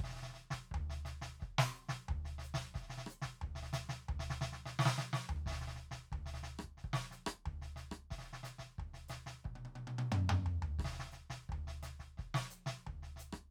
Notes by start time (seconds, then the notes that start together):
0.01 kick, snare
0.09 snare
0.14 snare
0.17 snare
0.23 snare
0.29 snare
0.34 snare
0.51 kick, snare
0.72 kick, floor tom
0.90 snare
1.06 snare, hi-hat pedal
1.22 kick, snare
1.40 kick, snare
1.59 snare
1.74 snare, hi-hat pedal
1.89 kick, snare
2.09 kick, floor tom
2.25 snare
2.39 snare
2.45 hi-hat pedal
2.55 kick, snare
2.75 kick, snare
2.82 snare
2.89 snare
2.90 snare
2.98 snare
3.07 cross-stick, hi-hat pedal
3.22 kick, snare
3.42 kick, floor tom
3.56 snare
3.63 snare
3.74 snare, hi-hat pedal
3.90 snare
4.09 kick, floor tom
4.20 snare
4.31 snare
4.42 snare
4.53 snare
4.66 snare
4.80 snare
4.86 snare
4.99 snare
5.14 snare
5.30 floor tom
5.37 cross-stick
5.47 kick, snare
5.52 snare
5.56 snare
5.62 snare
5.68 snare
5.76 snare
5.92 kick, snare
6.12 kick, floor tom
6.27 snare
6.35 snare
6.44 snare, hi-hat pedal
6.60 cross-stick
6.65 kick
6.78 snare
6.85 kick
6.94 snare
7.12 snare, hi-hat pedal
7.27 kick, cross-stick
7.46 kick, floor tom
7.62 snare
7.77 snare, hi-hat pedal
7.92 kick, cross-stick
8.11 kick, snare
8.19 snare
8.24 snare
8.34 snare
8.44 snare, hi-hat pedal
8.59 kick, snare
8.79 kick, floor tom
8.94 snare
9.09 snare, hi-hat pedal
9.27 snare
9.45 kick, high tom
9.56 high tom
9.66 high tom
9.76 high tom
9.88 high tom
9.99 high tom
10.12 mid tom
10.30 mid tom
10.47 floor tom
10.63 floor tom
10.79 kick, cross-stick
10.85 snare
10.90 snare
10.93 snare
11.00 snare
11.06 snare
11.12 snare, hi-hat pedal
11.30 kick, snare
11.50 kick, floor tom
11.68 snare
11.83 snare, hi-hat pedal
12.00 kick, snare
12.18 kick, snare
12.35 snare
12.51 snare, hi-hat pedal
12.67 kick, snare
12.87 kick, floor tom
13.03 snare
13.17 snare, hi-hat pedal
13.33 kick, cross-stick